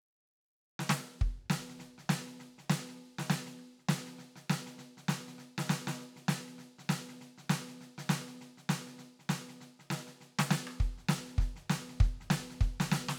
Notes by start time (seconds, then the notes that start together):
0.79 snare
0.89 snare
1.21 kick
1.46 kick
1.50 snare
1.69 snare
1.79 snare
1.98 snare
2.09 snare
2.27 snare
2.40 snare
2.58 snare
2.70 snare
2.88 snare
3.19 snare
3.30 snare
3.46 snare
3.59 cross-stick
3.79 snare
3.89 snare
4.07 snare
4.19 snare
4.36 snare
4.50 snare
4.66 snare
4.78 snare
4.97 snare
5.08 snare
5.27 snare
5.38 snare
5.58 snare
5.70 snare
5.87 snare
6.00 snare
6.16 snare
6.28 snare
6.47 snare
6.58 snare
6.79 snare
6.89 snare
7.09 snare
7.21 snare
7.38 snare
7.50 snare
7.68 snare
7.81 snare
7.98 snare
8.09 snare
8.15 snare
8.27 snare
8.41 snare
8.57 snare
8.69 snare
8.87 snare
8.98 snare
9.19 snare
9.29 snare
9.48 snare
9.61 snare
9.79 snare
9.90 snare
10.07 snare
10.21 snare
10.39 snare
10.51 snare
10.67 cross-stick
10.80 kick, snare
10.98 snare
11.09 snare
11.27 snare
11.38 kick, snare
11.56 snare
11.70 snare
11.89 snare
12.00 kick, snare
12.21 snare
12.30 snare
12.50 snare
12.61 kick, snare
12.80 snare
12.92 snare
13.09 snare